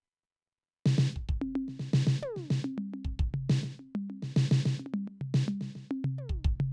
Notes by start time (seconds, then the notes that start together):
0.86 snare
0.98 snare, hi-hat pedal
1.16 kick
1.29 kick
1.41 high tom
1.55 high tom
1.68 snare
1.79 snare
1.93 snare
2.07 snare
2.22 high tom
2.36 snare
2.50 snare
2.64 high tom
2.78 mid tom
2.94 high tom
3.05 kick
3.19 kick
3.34 floor tom
3.50 snare
3.63 snare
3.79 high tom
3.95 mid tom
4.10 high tom
4.23 snare
4.36 snare
4.51 snare
4.65 snare
4.79 high tom
4.86 high tom
4.94 mid tom
5.07 mid tom
5.21 floor tom
5.34 snare
5.48 mid tom
5.61 snare
5.75 snare
5.91 high tom
6.04 floor tom
6.18 high tom
6.29 kick
6.45 kick
6.60 floor tom